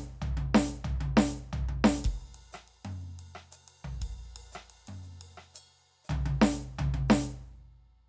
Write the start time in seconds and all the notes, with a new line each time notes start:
0.22 floor tom
0.37 high tom
0.54 snare
0.84 floor tom
1.00 high tom
1.17 snare
1.53 floor tom
1.69 high tom
1.84 snare
2.04 kick, ride
2.34 ride
2.52 cross-stick, hi-hat pedal
2.68 ride
2.85 mid tom, ride
3.19 ride
3.35 cross-stick
3.51 hi-hat pedal, ride
3.68 ride
3.84 floor tom
4.01 kick, ride
4.36 ride
4.52 cross-stick, hi-hat pedal
4.70 ride
4.87 mid tom, ride
5.03 hi-hat pedal
5.21 ride
5.37 cross-stick
5.54 hi-hat pedal, ride bell
6.04 hi-hat pedal
6.09 floor tom, high tom
6.26 high tom
6.41 snare
6.58 hi-hat pedal
6.78 floor tom, high tom
6.94 high tom
7.08 snare, hi-hat pedal